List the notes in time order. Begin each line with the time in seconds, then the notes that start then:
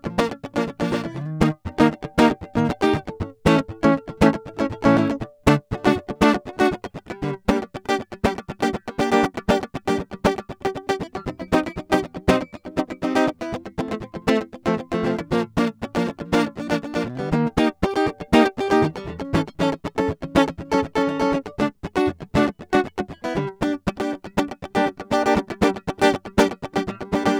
0.08 F3
0.20 A#3
0.58 E3 A#3 D4
0.82 F3 A#3 D4
0.94 F3 A#3 D4
1.42 D#3 A#3 D#4
1.81 D#3 A#3 D#4
2.19 D#3 A#3 D#4 G4
2.56 D#3 A#3 D#4
2.83 D#4 G4
3.23 C#4
3.47 E3 A3 C#4 E4
3.84 E3 A3 C#4 E4
4.23 E3 A3 C#4 E4
4.61 C#4 E4
4.85 A2 E3 A3 C#4 E4
4.98 E3 A3 C#4 E4
5.48 D3 A3 D4
5.77 F#4
5.86 D3 A3 D4 F#4
6.23 A3 D4
6.61 A3 D4 F#4
7.13 G3
7.23 D3 G3 A#3
7.50 G3 A#3 D4 G4
7.90 A#3 D4 G4
8.25 G3 G4
8.62 D4 G4
9.00 A#3 D4 G4
9.13 A#3 D4 G4
9.50 A#3 D4 G4
9.88 A#3 D4 G4
10.27 D4 G4
10.66 G4
10.77 G4
10.90 G4
11.54 C4 D#4
11.93 C4 D#4 G4
12.30 C4 D#4
12.67 C4
12.78 C4
13.04 C4 D#4 G4
13.17 C4 D#4 G4
13.42 B3 E4
13.79 A3 C4
13.93 A3 C4
14.29 A3 C4
14.68 F3 A3 C4
14.94 F3 A3 C4
15.06 F3 A3 C4
15.33 F3 A#3
15.58 F3 A#3 D4
15.97 F3 A#3 D4
16.34 F3 A#3 D4
16.72 A#3 D4
16.96 F3 A#3 D4
17.20 G3 B3
17.34 D#3 A#3 D#4
17.59 A#3 D#4 G4
17.85 G4
17.98 D#4 G4
18.34 A#3 D#4 G4
18.62 G4
18.73 A#3 D#4 G4
18.84 D#3
18.98 G3
19.09 G3
19.20 C#4
19.35 E3 C#4 A4
19.60 E3 C#4 A4
19.99 C#4 A4
20.36 E3 C#4 A4
20.73 C#4 A4
20.96 C#4 A4
21.10 C#4
21.21 C#4 A4
21.34 C#4
21.61 A3 D4
21.98 D4 F#4
22.36 A3 D4 F#4
22.74 D4 F#4
23.15 E4
23.25 B3 E4
23.36 D3 G3
23.64 D4 G4
24.02 D4 G4
24.76 A#3 D4 G4
25.12 A#3 D4 G4
25.27 A#3 D4 G4
25.38 G3
25.63 G3 A#3 D4 G4
26.03 G3 A#3 D4 G4
26.39 G3 A#3 D4 G4
26.77 D4 G4
27.14 G3 A#3 D4 G4
27.23 G3
27.27 A#3 D4 G4